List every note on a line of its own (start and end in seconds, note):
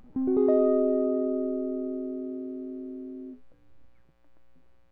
0.16 3.36 C4
0.28 3.35 F#4
0.37 3.05 G#4
0.48 3.21 D#5